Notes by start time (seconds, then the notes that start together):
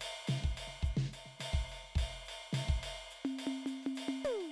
0.01 hi-hat pedal, ride bell
0.28 snare, hi-hat pedal, ride
0.43 kick, snare
0.57 hi-hat pedal, ride bell
0.68 snare
0.83 kick, hi-hat pedal, ride
0.97 snare
1.13 hi-hat pedal, ride bell
1.26 snare
1.40 snare, hi-hat pedal, ride
1.54 kick, ride
1.69 hi-hat pedal, ride bell
1.84 snare
1.96 kick, hi-hat pedal, ride
2.13 ride
2.26 hi-hat pedal, ride bell
2.53 snare, hi-hat pedal, ride
2.68 kick, snare
2.83 hi-hat pedal, ride bell
3.11 hi-hat pedal, ride
3.25 high tom, ride
3.39 hi-hat pedal, ride bell
3.47 high tom
3.67 hi-hat pedal, high tom, ride bell
3.83 high tom, ride
3.96 hi-hat pedal, ride bell
4.09 open hi-hat, high tom
4.25 hi-hat pedal, high tom, ride
4.41 ride